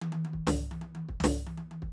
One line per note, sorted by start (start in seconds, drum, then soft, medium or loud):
0.01 high tom loud
0.12 high tom medium
0.25 high tom medium
0.33 kick soft
0.47 snare loud
0.47 floor tom loud
0.71 high tom medium
0.81 high tom medium
0.95 high tom medium
1.09 kick medium
1.20 snare loud
1.20 floor tom loud
1.47 high tom medium
1.57 high tom medium
1.71 high tom medium
1.82 kick medium